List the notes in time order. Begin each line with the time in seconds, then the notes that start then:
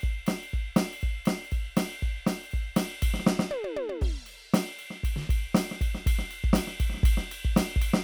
0.01 kick, ride
0.27 snare, hi-hat pedal, ride
0.43 ride
0.49 hi-hat pedal, ride
0.54 kick
0.76 snare, ride
0.93 ride
1.01 kick, ride
1.26 snare, ride
1.45 ride
1.52 kick, ride
1.77 snare, ride
1.93 ride
1.99 kick, ride
2.27 snare, hi-hat pedal, ride
2.44 ride
2.51 kick, ride
2.76 snare, ride
3.00 kick, hi-hat pedal, ride
3.14 snare
3.20 snare
3.27 snare, hi-hat pedal
3.39 snare
3.51 high tom
3.64 high tom
3.76 high tom
3.89 high tom
4.01 kick, hi-hat pedal, crash
4.26 ride
4.54 snare, ride
4.77 hi-hat pedal, ride
4.91 snare
5.04 kick, ride
5.16 snare
5.29 kick, ride
5.55 snare, ride
5.71 snare
5.79 kick, hi-hat pedal, ride
5.95 snare
6.06 kick, ride
6.19 snare
6.31 ride
6.44 kick
6.53 snare, ride
6.67 snare
6.80 kick, ride
6.90 snare
6.94 snare
6.97 snare
7.03 kick, ride
7.17 snare
7.31 ride
7.45 kick
7.57 snare, ride
7.76 kick
7.82 ride
7.94 snare